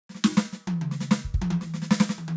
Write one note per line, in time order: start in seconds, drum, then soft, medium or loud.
0.10 snare soft
0.15 snare soft
0.25 snare loud
0.38 snare loud
0.53 snare medium
0.68 high tom loud
0.82 mid tom loud
0.92 snare medium
1.01 snare medium
1.11 snare loud
1.25 kick soft
1.35 kick medium
1.42 high tom loud
1.51 high tom loud
1.62 snare medium
1.74 snare medium
1.82 snare medium
1.91 snare loud
2.01 snare loud
2.10 snare medium
2.19 high tom medium
2.29 high tom loud